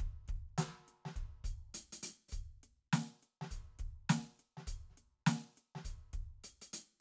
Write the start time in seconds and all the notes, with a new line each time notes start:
0.01 kick, closed hi-hat
0.07 kick
0.10 kick
0.25 snare, closed hi-hat
0.30 kick
0.37 kick
0.50 kick
0.59 closed hi-hat, snare
0.89 closed hi-hat
1.07 snare
1.17 kick, closed hi-hat
1.23 kick
1.45 closed hi-hat, kick
1.54 kick
1.76 closed hi-hat
1.94 closed hi-hat
2.04 closed hi-hat
2.30 closed hi-hat, kick, hi-hat pedal
2.65 closed hi-hat
2.94 closed hi-hat, snare
3.24 closed hi-hat
3.43 snare
3.52 closed hi-hat, kick
3.80 kick, closed hi-hat
4.11 closed hi-hat, snare
4.41 closed hi-hat
4.58 snare
4.68 closed hi-hat, kick
4.91 snare
4.99 closed hi-hat
5.28 closed hi-hat, snare
5.59 closed hi-hat
5.76 snare
5.86 closed hi-hat, kick
6.15 kick, closed hi-hat
6.45 closed hi-hat
6.63 closed hi-hat
6.75 closed hi-hat